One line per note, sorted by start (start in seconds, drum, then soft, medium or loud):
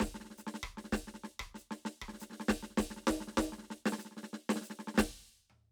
0.01 kick soft
0.01 snare medium
0.15 snare soft
0.21 snare soft
0.26 snare soft
0.31 snare soft
0.39 snare soft
0.39 hi-hat pedal soft
0.48 snare soft
0.55 snare soft
0.64 kick soft
0.64 cross-stick medium
0.78 snare soft
0.85 snare soft
0.93 kick soft
0.93 snare medium
0.93 hi-hat pedal soft
1.08 snare soft
1.15 snare soft
1.24 snare soft
1.40 kick soft
1.40 cross-stick medium
1.55 snare soft
1.55 hi-hat pedal soft
1.72 snare soft
1.86 snare medium
2.02 kick soft
2.02 cross-stick medium
2.09 snare soft
2.14 snare soft
2.21 snare soft
2.21 hi-hat pedal medium
2.31 snare soft
2.33 snare soft
2.49 kick soft
2.49 snare loud
2.63 snare soft
2.71 snare soft
2.78 kick soft
2.78 snare loud
2.78 hi-hat pedal medium
2.91 snare soft
2.97 snare soft
3.03 snare soft
3.08 kick soft
3.08 snare loud
3.21 snare soft
3.28 snare soft
3.33 snare soft
3.38 kick soft
3.38 snare loud
3.38 hi-hat pedal soft
3.53 snare soft
3.59 snare soft
3.64 snare soft
3.71 snare soft
3.86 snare medium
3.93 snare medium
3.99 snare soft
3.99 hi-hat pedal soft
4.06 snare soft
4.12 snare soft
4.18 snare soft
4.24 snare soft
4.34 snare soft
4.50 snare medium
4.57 snare medium
4.62 snare soft
4.62 hi-hat pedal medium
4.71 snare soft
4.80 snare soft
4.88 snare soft
4.95 snare soft
4.99 kick soft
4.99 snare loud
5.10 kick soft
5.51 floor tom soft